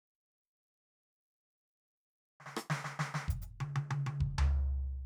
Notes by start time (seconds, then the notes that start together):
2.40 snare
2.46 snare
2.57 cross-stick
2.70 snare
2.84 snare
2.99 snare
3.14 snare
3.28 open hi-hat, kick
3.42 hi-hat pedal
3.60 high tom
3.76 high tom
3.91 high tom
4.06 high tom
4.20 kick
4.38 floor tom